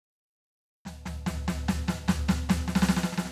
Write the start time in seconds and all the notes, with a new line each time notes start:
0.86 snare, floor tom
1.06 snare, floor tom
1.27 snare, floor tom
1.48 snare, floor tom
1.69 snare, floor tom
1.88 snare, floor tom
2.08 snare, floor tom
2.29 snare, floor tom
2.50 snare, floor tom
2.68 snare
2.76 snare
2.82 snare
2.89 snare
2.97 snare
3.04 snare
3.13 snare
3.18 snare
3.26 snare